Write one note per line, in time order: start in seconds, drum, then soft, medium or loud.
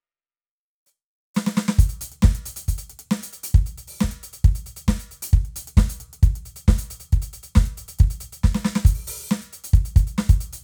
0.86 hi-hat pedal soft
1.35 snare loud
1.35 hi-hat pedal medium
1.57 snare loud
1.68 snare loud
1.79 closed hi-hat loud
1.79 kick loud
1.89 closed hi-hat medium
2.01 closed hi-hat loud
2.12 closed hi-hat medium
2.22 kick loud
2.22 snare loud
2.35 closed hi-hat medium
2.46 closed hi-hat loud
2.56 closed hi-hat loud
2.68 closed hi-hat medium
2.68 kick medium
2.78 closed hi-hat medium
2.90 closed hi-hat medium
2.99 closed hi-hat medium
3.11 snare loud
3.23 closed hi-hat loud
3.33 closed hi-hat medium
3.44 closed hi-hat loud
3.54 kick loud
3.54 closed hi-hat soft
3.66 closed hi-hat medium
3.78 open hi-hat medium
4.00 snare loud
4.00 hi-hat pedal soft
4.04 kick medium
4.11 closed hi-hat medium
4.23 closed hi-hat medium
4.33 closed hi-hat medium
4.44 kick loud
4.44 closed hi-hat medium
4.55 closed hi-hat medium
4.66 closed hi-hat medium
4.76 closed hi-hat medium
4.88 kick medium
4.88 snare loud
5.00 closed hi-hat medium
5.11 closed hi-hat medium
5.22 closed hi-hat loud
5.33 kick loud
5.33 closed hi-hat soft
5.45 closed hi-hat soft
5.56 closed hi-hat loud
5.67 closed hi-hat medium
5.77 kick loud
5.77 snare loud
5.89 closed hi-hat medium
6.00 closed hi-hat medium
6.13 closed hi-hat medium
6.23 kick loud
6.23 closed hi-hat medium
6.35 closed hi-hat medium
6.45 closed hi-hat medium
6.56 closed hi-hat medium
6.68 kick loud
6.68 snare loud
6.78 closed hi-hat medium
6.90 closed hi-hat medium
7.00 closed hi-hat medium
7.12 kick loud
7.12 closed hi-hat medium
7.22 closed hi-hat medium
7.33 closed hi-hat medium
7.43 closed hi-hat medium
7.55 kick loud
7.55 snare loud
7.65 closed hi-hat medium
7.77 closed hi-hat medium
7.88 closed hi-hat medium
7.99 kick loud
7.99 closed hi-hat medium
8.10 closed hi-hat medium
8.32 closed hi-hat medium
8.44 kick loud
8.44 snare medium
8.55 snare loud
8.76 snare loud
8.85 closed hi-hat medium
8.85 kick loud
8.95 open hi-hat medium
9.07 open hi-hat loud
9.29 snare loud
9.29 hi-hat pedal soft
9.42 closed hi-hat medium
9.53 closed hi-hat medium
9.64 closed hi-hat loud
9.73 kick loud
9.73 closed hi-hat medium
9.85 closed hi-hat medium
9.96 closed hi-hat medium
9.96 kick loud
10.07 closed hi-hat medium
10.18 snare loud
10.29 closed hi-hat medium
10.29 kick loud
10.41 closed hi-hat medium
10.53 closed hi-hat medium